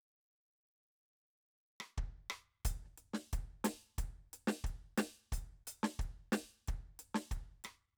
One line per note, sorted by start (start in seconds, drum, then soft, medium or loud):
1.80 cross-stick medium
1.97 kick medium
2.30 cross-stick medium
2.65 closed hi-hat medium
2.65 kick medium
2.84 snare soft
2.97 closed hi-hat soft
3.13 snare medium
3.33 kick medium
3.33 closed hi-hat medium
3.64 snare medium
3.64 closed hi-hat medium
3.72 kick soft
3.98 kick medium
3.98 closed hi-hat medium
4.33 closed hi-hat medium
4.47 snare medium
4.64 kick medium
4.64 closed hi-hat soft
4.97 snare medium
4.97 closed hi-hat medium
5.32 closed hi-hat medium
5.32 kick medium
5.67 closed hi-hat medium
5.83 snare medium
5.99 kick medium
5.99 closed hi-hat soft
6.32 snare medium
6.32 closed hi-hat medium
6.43 kick soft
6.67 kick medium
6.67 closed hi-hat soft
6.99 closed hi-hat medium
7.14 snare medium
7.31 kick medium
7.31 closed hi-hat soft
7.64 cross-stick medium
7.64 closed hi-hat soft